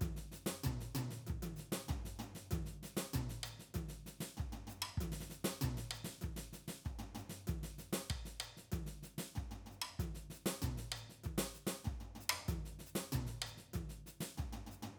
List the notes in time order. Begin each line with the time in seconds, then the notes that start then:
0.01 kick, high tom
0.08 kick
0.16 snare
0.32 snare, hi-hat pedal
0.46 snare
0.64 kick, mid tom
0.72 kick
0.80 snare
0.95 hi-hat pedal, mid tom
1.11 snare
1.27 kick, high tom
1.42 high tom
1.56 snare, hi-hat pedal
1.72 snare
1.88 kick, floor tom
1.96 kick
1.99 kick
2.05 snare
2.19 floor tom, hi-hat pedal
2.35 snare
2.51 kick, high tom
2.58 kick
2.62 kick, snare
2.83 snare, hi-hat pedal
2.97 snare
3.14 kick, mid tom
3.21 kick
3.29 snare
3.43 hi-hat pedal, mid tom
3.60 snare
3.74 kick, high tom
3.81 kick
3.89 snare
4.06 snare, hi-hat pedal
4.21 snare
4.37 kick, floor tom
4.46 kick
4.52 floor tom
4.67 floor tom, hi-hat pedal
4.82 floor tom
4.98 kick, high tom
5.04 kick
5.12 snare
5.21 snare
5.30 snare, hi-hat pedal
5.44 snare
5.61 kick, mid tom
5.77 snare
5.91 hi-hat pedal, mid tom
6.05 snare
6.21 kick, high tom
6.36 snare
6.53 snare, hi-hat pedal
6.68 snare
6.85 kick, floor tom
6.99 floor tom
7.15 floor tom, hi-hat pedal
7.30 snare
7.47 kick, high tom
7.63 snare
7.78 snare, hi-hat pedal
7.93 snare
8.10 kick, mid tom
8.25 snare
8.40 hi-hat pedal, mid tom
8.57 snare
8.72 kick, high tom
8.86 snare
9.03 snare, hi-hat pedal
9.18 snare
9.35 kick, floor tom
9.51 floor tom
9.66 floor tom
9.71 hi-hat pedal
9.82 floor tom
9.99 kick, high tom
10.15 snare
10.30 snare
10.34 hi-hat pedal
10.46 snare
10.62 kick, mid tom
10.73 kick
10.77 snare
10.92 hi-hat pedal, mid tom
11.10 snare
11.24 kick, high tom
11.38 snare
11.54 snare, hi-hat pedal
11.67 snare
11.85 kick, floor tom
11.93 kick
12.00 floor tom
12.15 floor tom
12.21 hi-hat pedal
12.29 floor tom
12.48 kick, high tom
12.65 snare
12.79 snare
12.86 hi-hat pedal
12.95 snare
13.12 kick, mid tom
13.27 snare
13.42 mid tom
13.46 hi-hat pedal
13.58 snare
13.74 kick, high tom
13.81 kick
13.89 snare
14.06 snare, hi-hat pedal
14.21 snare
14.38 kick, floor tom
14.45 kick
14.53 floor tom
14.67 floor tom
14.71 hi-hat pedal
14.83 floor tom